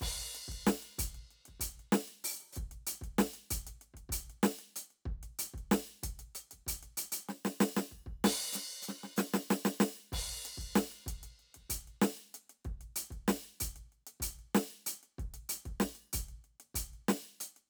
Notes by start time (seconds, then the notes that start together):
0.01 kick, crash
0.19 closed hi-hat
0.35 closed hi-hat
0.48 kick, closed hi-hat
0.67 snare
0.82 closed hi-hat
0.99 closed hi-hat, kick
1.14 closed hi-hat
1.31 closed hi-hat
1.45 kick, closed hi-hat
1.60 closed hi-hat, kick
1.79 closed hi-hat
1.92 snare
2.08 closed hi-hat
2.24 open hi-hat
2.40 open hi-hat
2.53 kick, closed hi-hat, hi-hat pedal
2.71 closed hi-hat
2.87 closed hi-hat
3.01 kick, closed hi-hat
3.18 snare
3.33 closed hi-hat
3.51 closed hi-hat, kick
3.67 closed hi-hat
3.81 closed hi-hat
3.94 kick, closed hi-hat
4.09 closed hi-hat, kick
4.30 closed hi-hat
4.43 snare
4.59 closed hi-hat
4.76 closed hi-hat
4.90 closed hi-hat
5.06 kick
5.23 open hi-hat
5.39 closed hi-hat
5.54 kick
5.58 closed hi-hat
5.71 snare
5.87 closed hi-hat
6.03 kick, closed hi-hat
6.19 open hi-hat
6.35 closed hi-hat
6.51 kick, closed hi-hat
6.67 closed hi-hat, kick
6.83 closed hi-hat
6.97 closed hi-hat
7.12 closed hi-hat
7.29 snare
7.45 snare
7.60 snare
7.77 snare
7.91 kick
8.06 kick
8.24 snare, crash
8.53 snare, hi-hat pedal
8.82 hi-hat pedal
8.89 snare
9.03 snare
9.16 snare, hi-hat pedal
9.34 snare
9.50 snare
9.65 snare
9.71 hi-hat pedal
9.80 snare
10.12 kick, crash
10.27 closed hi-hat
10.45 closed hi-hat
10.58 kick, closed hi-hat
10.76 snare
10.92 closed hi-hat
11.06 kick, closed hi-hat
11.23 closed hi-hat
11.39 closed hi-hat
11.54 kick, closed hi-hat
11.70 closed hi-hat, kick
11.87 closed hi-hat
12.02 snare
12.17 closed hi-hat
12.34 closed hi-hat
12.49 closed hi-hat
12.65 kick, closed hi-hat
12.81 closed hi-hat
12.96 closed hi-hat
13.11 kick, closed hi-hat
13.28 snare
13.42 closed hi-hat
13.60 closed hi-hat, kick
13.76 closed hi-hat
13.92 closed hi-hat
14.07 closed hi-hat
14.20 closed hi-hat, kick
14.39 closed hi-hat
14.55 snare
14.69 closed hi-hat
14.86 closed hi-hat
15.03 closed hi-hat
15.18 kick, closed hi-hat
15.34 closed hi-hat
15.49 closed hi-hat
15.65 kick, closed hi-hat
15.80 snare
15.95 closed hi-hat
16.13 closed hi-hat, kick
16.29 closed hi-hat
16.44 open hi-hat
16.60 closed hi-hat
16.74 closed hi-hat, kick
16.93 closed hi-hat
17.08 snare
17.24 closed hi-hat
17.40 closed hi-hat
17.56 closed hi-hat